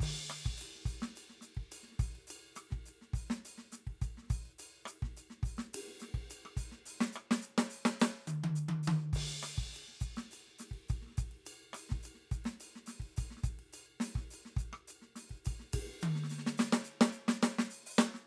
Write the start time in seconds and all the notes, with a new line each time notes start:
0.01 kick, hi-hat pedal, ride
0.29 cross-stick, hi-hat pedal
0.45 kick, snare
0.58 hi-hat pedal
0.62 ride
0.75 snare
0.86 kick, hi-hat pedal, ride
1.01 snare, ride
1.16 hi-hat pedal, ride bell
1.30 snare
1.42 snare, hi-hat pedal, ride
1.55 kick, ride
1.72 hi-hat pedal, ride bell
1.84 snare
1.89 snare
1.92 snare
1.96 snare
2.00 kick, hi-hat pedal, ride
2.16 ride
2.28 hi-hat pedal, ride bell
2.56 cross-stick, hi-hat pedal, ride
2.71 kick, snare
2.86 hi-hat pedal, ride
3.02 snare
3.14 kick, hi-hat pedal, ride
3.29 snare, ride
3.45 hi-hat pedal, ride bell
3.58 snare
3.72 snare, hi-hat pedal, ride
3.87 kick, ride
4.02 kick, hi-hat pedal, ride bell
4.18 snare
4.23 snare
4.28 kick, snare, hi-hat pedal
4.33 ride
4.46 ride
4.59 hi-hat pedal, ride bell
4.86 cross-stick, hi-hat pedal, ride
5.03 kick, snare
5.17 hi-hat pedal, ride bell
5.31 snare
5.43 kick, hi-hat pedal, ride
5.58 snare, ride
5.74 hi-hat pedal, ride
5.88 snare
6.00 snare, hi-hat pedal, ride
6.15 kick, ride
6.30 hi-hat pedal, ride bell
6.46 cross-stick
6.57 kick, hi-hat pedal, ride
6.72 snare
6.86 hi-hat pedal
7.01 snare
7.13 cross-stick, hi-hat pedal
7.31 snare
7.42 hi-hat pedal
7.58 snare
7.70 hi-hat pedal
7.86 snare
8.00 snare, hi-hat pedal
8.28 hi-hat pedal, high tom
8.44 high tom
8.56 hi-hat pedal
8.69 high tom
8.84 hi-hat pedal
8.88 high tom
9.14 kick, hi-hat pedal, ride
9.43 cross-stick, hi-hat pedal
9.58 kick, snare
9.73 hi-hat pedal, ride bell
9.88 snare
10.01 kick, hi-hat pedal, ride
10.17 snare, ride
10.32 hi-hat pedal, ride bell
10.48 snare
10.59 snare, hi-hat pedal, ride
10.72 kick, ride
10.89 kick, hi-hat pedal, ride bell
11.02 snare
11.07 snare
11.10 snare
11.14 snare
11.18 kick, hi-hat pedal, ride
11.32 ride
11.46 hi-hat pedal, ride bell
11.74 cross-stick, hi-hat pedal, ride
11.90 kick, snare
12.03 hi-hat pedal, ride bell
12.15 snare
12.32 kick, hi-hat pedal, ride
12.45 snare, ride
12.60 hi-hat pedal, ride bell
12.76 snare
12.87 snare, hi-hat pedal, ride
13.00 kick, ride
13.17 kick, hi-hat pedal, ride bell
13.31 snare
13.37 snare
13.43 kick, snare, hi-hat pedal, ride
13.52 snare
13.60 ride
13.73 hi-hat pedal, ride bell
14.01 snare, hi-hat pedal, ride
14.16 kick, snare
14.31 hi-hat pedal, ride bell
14.46 snare
14.57 kick, hi-hat pedal
14.61 ride
14.73 cross-stick
14.88 hi-hat pedal, ride bell
15.02 snare
15.16 snare, hi-hat pedal, ride
15.30 kick, ride
15.45 kick, hi-hat pedal, ride bell
15.60 snare
15.73 kick, hi-hat pedal, ride
15.87 snare
16.02 hi-hat pedal, high tom
16.16 snare
16.24 snare
16.30 snare, hi-hat pedal
16.39 snare
16.47 snare
16.58 snare, hi-hat pedal
16.73 snare
16.85 hi-hat pedal
17.01 snare
17.13 hi-hat pedal
17.29 snare
17.43 snare, hi-hat pedal
17.59 snare
17.71 hi-hat pedal
17.87 open hi-hat
17.99 snare, hi-hat pedal
18.15 snare